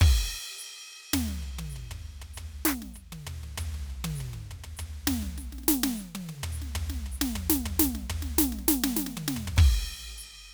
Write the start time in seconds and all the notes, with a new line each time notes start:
0.00 kick, crash
0.58 hi-hat pedal
1.13 snare, floor tom, hi-hat pedal
1.28 snare
1.42 floor tom
1.58 mid tom
1.69 hi-hat pedal
1.76 floor tom
1.91 floor tom
2.21 floor tom
2.33 floor tom, hi-hat pedal
2.65 percussion, snare
2.82 snare
2.94 floor tom, hi-hat pedal
3.12 mid tom
3.27 floor tom
3.43 mid tom
3.57 floor tom, hi-hat pedal
3.74 mid tom
3.90 floor tom
4.04 mid tom
4.15 hi-hat pedal
4.20 floor tom
4.33 mid tom
4.51 floor tom
4.63 floor tom
4.77 floor tom, hi-hat pedal
5.07 snare, floor tom
5.22 snare
5.37 snare, hi-hat pedal
5.52 snare
5.58 snare
5.63 snare
5.68 snare
5.83 snare
5.96 hi-hat pedal
6.00 snare
6.15 high tom
6.29 mid tom
6.43 floor tom
6.52 hi-hat pedal
6.62 snare
6.75 floor tom
6.90 snare
7.06 floor tom
7.12 hi-hat pedal
7.21 snare
7.35 floor tom
7.50 snare
7.65 floor tom
7.79 snare, hi-hat pedal
7.95 snare
8.10 floor tom
8.22 snare
8.38 snare, hi-hat pedal
8.52 snare
8.59 snare
8.68 snare
8.84 snare
8.96 snare, hi-hat pedal
9.06 snare
9.17 mid tom
9.28 snare
9.36 floor tom
9.47 kick, floor tom
9.56 kick, crash
10.18 hi-hat pedal